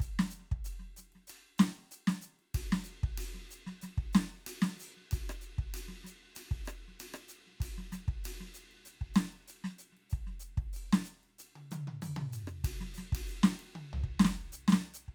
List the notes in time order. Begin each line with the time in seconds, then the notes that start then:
0.01 kick, hi-hat pedal, ride bell
0.20 snare
0.31 hi-hat pedal
0.40 snare
0.52 kick
0.65 hi-hat pedal, ride bell
0.80 snare
0.97 snare, hi-hat pedal, ride
1.13 snare, ride
1.28 hi-hat pedal, ride bell
1.59 snare, hi-hat pedal
1.76 ride
1.92 hi-hat pedal, ride bell
2.08 snare
2.22 hi-hat pedal, ride
2.39 snare, ride
2.55 kick, hi-hat pedal, ride
2.73 snare
2.85 hi-hat pedal
3.04 kick
3.19 hi-hat pedal, ride
3.35 snare
3.50 hi-hat pedal, ride
3.67 snare, ride
3.82 snare, hi-hat pedal, ride
3.98 kick
4.14 snare, hi-hat pedal
4.32 snare
4.47 hi-hat pedal, ride
4.63 snare
4.79 hi-hat pedal, ride
4.95 snare, ride
5.12 kick, hi-hat pedal, ride
5.30 cross-stick
5.42 hi-hat pedal
5.59 kick
5.75 hi-hat pedal, ride
5.89 snare
6.05 snare, hi-hat pedal, ride
6.22 ride
6.36 hi-hat pedal, ride
6.52 kick
6.66 cross-stick, hi-hat pedal, ride
6.89 snare
7.00 hi-hat pedal, ride
7.15 cross-stick
7.29 hi-hat pedal
7.48 snare
7.61 kick, hi-hat pedal, ride
7.79 snare
7.93 snare, hi-hat pedal, ride
8.09 kick
8.25 hi-hat pedal, ride
8.41 snare
8.55 snare, hi-hat pedal, ride
8.72 ride
8.86 hi-hat pedal, ride bell
9.02 kick
9.15 snare, hi-hat pedal
9.33 snare, ride
9.49 hi-hat pedal, ride bell
9.65 snare
9.79 hi-hat pedal, ride
9.93 snare
9.98 ride
10.11 kick, hi-hat pedal, ride bell
10.27 snare
10.41 hi-hat pedal, ride
10.58 kick, ride
10.74 hi-hat pedal, ride bell
10.94 snare
11.06 hi-hat pedal
11.24 ride
11.39 hi-hat pedal, ride bell
11.56 open hi-hat, high tom
11.72 hi-hat pedal, high tom
11.88 high tom
12.03 hi-hat pedal, high tom
12.17 high tom
12.34 hi-hat pedal, ride
12.48 cross-stick
12.65 kick, hi-hat pedal, ride
12.81 snare
12.95 snare, hi-hat pedal
13.13 kick, ride
13.28 hi-hat pedal, ride
13.44 snare
13.60 ride
13.76 high tom
13.94 floor tom
14.04 kick
14.21 snare
14.26 snare
14.53 hi-hat pedal
14.69 snare
14.73 snare
14.95 hi-hat pedal
15.09 kick